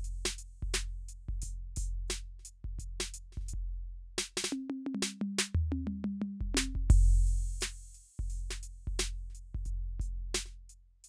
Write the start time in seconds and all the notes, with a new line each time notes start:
0.01 closed hi-hat, kick
0.25 snare
0.39 closed hi-hat
0.63 kick
0.74 closed hi-hat, snare
1.09 closed hi-hat
1.29 kick
1.42 open hi-hat, kick
1.76 open hi-hat, kick
2.08 closed hi-hat, snare, hi-hat pedal
2.40 snare
2.45 closed hi-hat
2.65 kick
2.79 closed hi-hat, kick
3.00 snare
3.14 closed hi-hat
3.32 snare
3.37 kick, snare
3.47 closed hi-hat, snare
3.54 kick
4.18 snare
4.37 snare
4.44 snare
4.52 high tom
4.70 high tom
4.87 high tom
4.95 mid tom
5.03 snare
5.22 mid tom
5.39 snare
5.55 floor tom
5.72 high tom
5.87 mid tom
6.04 mid tom
6.22 mid tom
6.41 kick
6.55 snare, high tom
6.75 kick
6.90 kick, crash
7.27 open hi-hat
7.61 closed hi-hat, snare
7.95 closed hi-hat
8.19 kick
8.30 open hi-hat
8.51 snare
8.63 closed hi-hat
8.87 kick
8.99 closed hi-hat, snare
9.30 snare
9.35 closed hi-hat
9.55 kick
9.66 closed hi-hat, kick
10.00 open hi-hat, kick
10.34 open hi-hat, snare, hi-hat pedal
10.46 snare
10.70 closed hi-hat
11.04 closed hi-hat